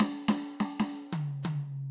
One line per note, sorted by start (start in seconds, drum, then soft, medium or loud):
0.00 snare loud
0.19 hi-hat pedal soft
0.28 snare loud
0.45 hi-hat pedal medium
0.60 snare loud
0.80 snare loud
0.94 hi-hat pedal medium
1.12 high tom loud
1.43 hi-hat pedal medium
1.43 high tom loud